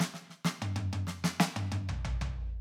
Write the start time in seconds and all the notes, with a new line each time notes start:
0.00 snare
0.14 snare
0.29 snare
0.45 snare
0.62 high tom
0.76 high tom
0.93 high tom
1.07 snare
1.24 snare
1.40 snare
1.56 high tom
1.72 high tom
1.89 floor tom
2.05 floor tom
2.21 floor tom